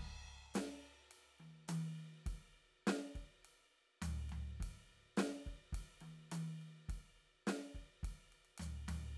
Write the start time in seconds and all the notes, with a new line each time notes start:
0.54 snare, hi-hat pedal, ride
0.81 ride
1.11 ride
1.39 high tom, ride
1.68 hi-hat pedal, high tom, ride
1.95 ride
2.26 kick, ride
2.87 snare, hi-hat pedal, ride
3.15 kick, ride
3.45 ride
4.02 floor tom, hi-hat pedal, ride
4.30 floor tom, ride
4.60 kick, ride
5.17 snare, hi-hat pedal, ride
5.47 kick, ride
5.73 kick, ride
6.01 high tom, ride
6.32 hi-hat pedal, high tom, ride
6.62 ride
6.89 kick, ride
7.47 snare, hi-hat pedal, ride
7.75 kick, ride
8.03 kick, ride
8.33 ride
8.45 ride
8.58 floor tom, hi-hat pedal, ride
8.88 floor tom, ride